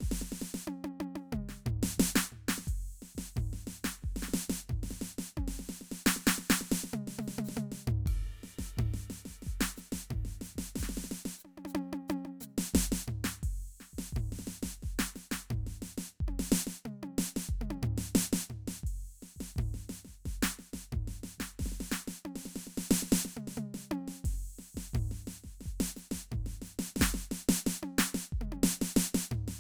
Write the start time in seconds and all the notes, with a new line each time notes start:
0.01 kick, snare
0.11 kick, snare
0.32 snare
0.42 snare
0.55 snare
0.68 high tom
0.85 high tom
1.01 high tom
1.16 open hi-hat, high tom
1.33 kick, mid tom
1.49 snare
1.66 kick, floor tom
1.83 snare
1.98 kick, snare
2.16 snare
2.32 floor tom
2.49 snare
2.58 snare
2.68 kick, crash
3.01 snare, hi-hat pedal
3.16 kick, snare
3.37 kick, floor tom
3.53 snare
3.68 snare
3.84 kick, snare
4.03 kick, snare
4.12 snare
4.17 snare
4.23 snare
4.29 snare
4.34 snare
4.39 hi-hat pedal
4.49 kick, snare
4.70 kick, floor tom
4.84 snare
4.91 snare
5.02 snare, hi-hat pedal
5.19 snare
5.38 kick, high tom
5.48 snare
5.60 snare
5.69 snare
5.81 snare
5.92 snare
6.07 snare
6.17 snare
6.27 snare
6.38 snare
6.50 snare
6.61 snare
6.72 snare
6.84 snare
6.94 mid tom
7.08 snare
7.19 hi-hat pedal, mid tom
7.28 snare
7.39 mid tom
7.45 hi-hat pedal
7.49 snare
7.57 mid tom
7.72 snare
7.88 floor tom
8.07 kick, ride
8.44 snare
8.59 kick, snare
8.78 kick, floor tom
8.94 snare
9.10 snare, hi-hat pedal
9.26 kick, snare
9.43 snare
9.47 kick
9.61 snare
9.76 snare, hi-hat pedal
9.93 kick, snare
10.11 kick, floor tom
10.25 snare
10.42 snare, hi-hat pedal
10.56 kick, snare
10.76 kick, snare, hi-hat pedal
10.83 snare
10.89 snare
10.98 snare
11.04 snare, hi-hat pedal
11.12 snare
11.26 snare
11.38 hi-hat pedal
11.45 high tom
11.58 high tom
11.65 hi-hat pedal, high tom
11.75 high tom
11.93 high tom
12.09 hi-hat pedal, high tom
12.25 high tom
12.41 hi-hat pedal, mid tom
12.58 snare
12.74 kick, snare
12.92 snare
13.08 floor tom
13.25 snare
13.44 kick, crash
13.81 snare
13.94 kick
13.99 snare
14.13 kick, floor tom
14.33 snare
14.39 snare
14.46 snare, hi-hat pedal
14.63 kick, snare
14.83 kick, snare
14.99 snare
15.15 snare, hi-hat pedal
15.32 kick, snare
15.51 kick, floor tom
15.67 snare
15.82 snare, hi-hat pedal
15.98 snare
16.21 kick
16.29 kick, high tom
16.40 snare
16.52 snare
16.67 snare
16.86 mid tom
17.03 high tom
17.19 snare
17.37 snare
17.49 kick
17.56 kick
17.62 mid tom
17.71 high tom
17.83 floor tom
17.98 snare
18.15 snare
18.33 snare
18.50 floor tom
18.68 snare
18.84 kick, crash
19.21 snare, hi-hat pedal
19.37 kick
19.41 snare
19.57 kick, floor tom
19.75 snare
19.90 snare, hi-hat pedal
20.05 kick, snare
20.26 kick, snare
20.43 snare
20.59 snare, hi-hat pedal
20.74 kick, snare
20.93 kick, floor tom
21.08 snare
21.24 snare, hi-hat pedal
21.39 kick, snare
21.60 kick, snare
21.66 snare
21.72 snare
21.81 snare
21.92 snare
22.08 snare
22.26 high tom
22.36 snare
22.46 snare
22.56 snare
22.67 snare
22.78 snare
22.91 snare
23.03 snare
23.13 snare
23.25 snare
23.37 mid tom
23.48 snare
23.58 mid tom
23.75 snare
23.92 high tom
24.08 snare
24.25 kick, snare, crash
24.34 snare
24.59 snare
24.75 kick, snare
24.94 kick, floor tom
25.12 snare
25.28 snare, hi-hat pedal
25.44 kick, snare
25.61 snare
25.66 kick
25.81 snare
25.96 snare, hi-hat pedal
26.12 kick, snare
26.32 kick, floor tom
26.47 snare
26.62 snare, hi-hat pedal
26.79 snare
26.97 kick, snare
27.02 snare
27.14 snare
27.32 snare
27.49 snare
27.67 snare
27.83 high tom
27.99 snare
28.15 snare
28.33 kick
28.42 kick, mid tom
28.53 high tom
28.64 snare
28.82 snare
28.97 snare
29.15 snare
29.32 floor tom
29.48 snare